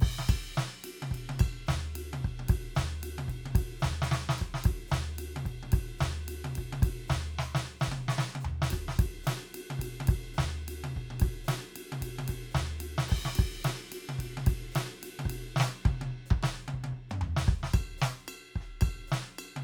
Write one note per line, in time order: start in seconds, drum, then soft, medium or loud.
0.01 kick loud
0.01 crash loud
0.19 snare medium
0.29 kick loud
0.29 ride bell loud
0.54 snare loud
0.54 hi-hat pedal medium
0.85 ride loud
1.03 high tom loud
1.12 kick medium
1.12 ride medium
1.30 high tom loud
1.40 kick loud
1.40 ride bell loud
1.67 snare loud
1.67 floor tom loud
1.67 hi-hat pedal medium
1.96 ride loud
2.14 high tom loud
2.25 kick medium
2.40 high tom loud
2.49 kick loud
2.49 ride loud
2.75 snare loud
2.75 floor tom loud
2.75 hi-hat pedal medium
3.04 ride loud
3.19 high tom loud
3.29 kick medium
3.29 ride medium
3.46 high tom loud
3.56 kick loud
3.56 ride loud
3.80 snare loud
3.80 hi-hat pedal medium
3.85 floor tom loud
4.02 snare loud
4.12 snare loud
4.30 snare loud
4.39 kick medium
4.39 ride medium
4.55 snare loud
4.65 kick loud
4.65 ride loud
4.88 snare loud
4.88 floor tom loud
4.88 hi-hat pedal medium
5.19 ride loud
5.37 high tom loud
5.46 kick medium
5.46 ride medium
5.63 high tom loud
5.72 kick loud
5.72 ride loud
5.99 snare loud
5.99 floor tom loud
5.99 hi-hat pedal medium
6.29 ride loud
6.45 high tom loud
6.56 kick medium
6.56 ride loud
6.73 high tom loud
6.83 kick loud
6.83 ride loud
7.08 snare loud
7.08 floor tom loud
7.08 hi-hat pedal medium
7.39 snare medium
7.55 kick soft
7.55 snare loud
7.55 hi-hat pedal medium
7.65 high tom soft
7.80 snare loud
7.80 hi-hat pedal medium
7.88 kick medium
7.92 high tom loud
8.09 snare loud
8.14 hi-hat pedal medium
8.19 snare loud
8.36 high tom loud
8.41 floor tom loud
8.41 hi-hat pedal medium
8.62 snare loud
8.62 hi-hat pedal soft
8.71 kick medium
8.71 ride loud
8.89 snare medium
8.99 kick loud
8.99 ride loud
9.24 snare loud
9.24 hi-hat pedal medium
9.28 ride loud
9.55 ride loud
9.71 high tom loud
9.80 kick medium
9.80 ride loud
10.01 high tom loud
10.08 kick loud
10.08 ride loud
10.34 hi-hat pedal medium
10.39 snare loud
10.39 floor tom loud
10.69 ride loud
10.84 high tom loud
10.97 kick medium
11.11 high tom loud
11.20 kick loud
11.20 ride loud
11.45 hi-hat pedal medium
11.49 snare loud
11.49 ride loud
11.76 ride loud
11.93 high tom loud
12.02 kick medium
12.02 ride loud
12.19 high tom loud
12.28 kick medium
12.28 ride loud
12.51 snare loud
12.51 floor tom loud
12.51 hi-hat pedal medium
12.81 ride loud
12.99 snare loud
13.09 kick loud
13.09 crash loud
13.26 snare loud
13.36 kick loud
13.36 ride loud
13.60 hi-hat pedal medium
13.65 snare loud
13.65 ride loud
13.92 ride loud
14.09 high tom loud
14.19 kick medium
14.19 ride loud
14.38 high tom loud
14.47 kick loud
14.47 ride loud
14.72 hi-hat pedal medium
14.72 ride loud
14.76 snare loud
15.04 ride loud
15.20 high tom loud
15.26 kick medium
15.30 ride loud
15.57 snare loud
15.57 hi-hat pedal medium
15.60 snare loud
15.86 kick loud
15.86 high tom loud
16.02 high tom loud
16.26 hi-hat pedal medium
16.31 kick loud
16.31 high tom loud
16.43 cross-stick medium
16.43 snare loud
16.43 hi-hat pedal soft
16.68 high tom loud
16.74 kick medium
16.84 high tom loud
16.93 kick soft
17.10 hi-hat pedal soft
17.10 mid tom loud
17.22 floor tom loud
17.37 snare loud
17.49 kick loud
17.64 snare medium
17.74 kick loud
17.74 ride bell loud
17.98 snare loud
17.98 hi-hat pedal medium
18.29 ride bell loud
18.56 kick medium
18.61 snare soft
18.81 kick loud
18.81 ride bell loud
19.08 hi-hat pedal medium
19.12 snare loud
19.39 ride bell loud
19.57 high tom loud